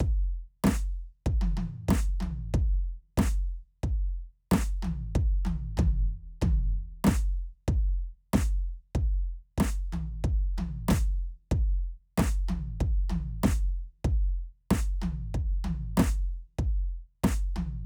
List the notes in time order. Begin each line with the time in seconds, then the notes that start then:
0.01 kick
0.64 kick, snare
0.68 snare
1.27 kick
1.42 high tom
1.58 high tom
1.89 kick, snare
2.21 floor tom, high tom
2.55 kick
3.18 kick, snare
3.84 kick
4.52 kick, snare
4.54 snare
4.83 floor tom, high tom
5.16 kick
5.46 floor tom, high tom
5.78 kick, floor tom, high tom
6.42 kick, floor tom, high tom
7.05 snare
7.07 kick, snare
7.69 kick
8.34 kick, snare
8.96 kick
9.58 kick, snare
9.93 floor tom, high tom
10.25 kick
10.59 floor tom, high tom
10.89 snare
10.91 kick, snare
11.52 kick
12.18 kick, snare
12.20 snare
12.49 floor tom, high tom
12.81 kick
13.10 floor tom, high tom
13.44 kick, snare
14.05 kick
14.71 kick, snare
15.02 floor tom, high tom
15.35 kick
15.65 floor tom, high tom
15.98 kick, snare
16.00 snare
16.59 kick
17.24 kick, snare
17.57 floor tom, high tom